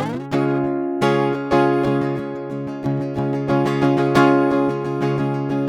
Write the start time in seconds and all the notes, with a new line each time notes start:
0.00 D#3 B3 C#4 D#4 A4
0.15 F4 G4
0.33 C#3 G#3 C#4 F4 G#4 C#5
0.66 C#3 G#3
1.03 C#3 G#3 C#4 F4 G#4 C#5
1.34 C#3 G#3 C#4 F4 G#4 C#5
1.52 C#3 G#3 C#4 F4 G#4 C#5
1.85 G#3 C#4 F4 G#4 C#5
1.89 C#3
2.03 C#3 G#3 C#4 F4
2.17 G#3 C#4 F4 G#4 C#5
2.21 C#3
2.37 C#3 G#3
2.51 C#3 G#3 C#4 F4
2.65 F4
2.69 C#3 G#3 C#4
2.84 C#3 G#3 C#4 F4 G#4
3.03 C#3 G#3 C#4
3.16 G#3 C#4 F4 G#4 C#5
3.20 C#3
3.35 C#3 G#3 C#4 F4
3.49 C#3 G#3 C#4 F4 G#4 C#5
3.67 C#3 G#3 C#4 F4 G#4 C#5
3.82 C#3 G#3 C#4 F4 G#4 C#5
3.99 C#3 G#3 C#4 F4 G#4 C#5
4.17 C#3 G#3 C#4 F4 G#4 C#5
4.51 G#3 C#4 F4 G#4 C#5
4.55 C#3
4.69 C#3 G#3 C#4 F4 G#4
4.85 C#3 G#3 C#4 F4 G#4 C#5
5.02 C#3 G#3 C#4 F4 G#4 C#5
5.18 G#3 C#4 F4 G#4 C#5
5.22 C#3
5.35 C#3 G#3 C#4 F4
5.50 C#3 G#3 C#4 F4 G#4 C#5